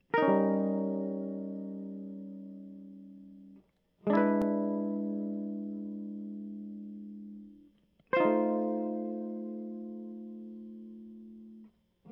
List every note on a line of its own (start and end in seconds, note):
0.14 2.98 A#4
0.19 3.60 D#4
0.23 3.63 C#4
0.29 3.69 G3
4.08 7.68 G#3
4.08 7.72 D4
4.14 7.71 E4
4.14 6.91 B4
8.14 11.67 F4
8.14 10.89 C5
8.21 11.71 D#4
8.26 11.71 A3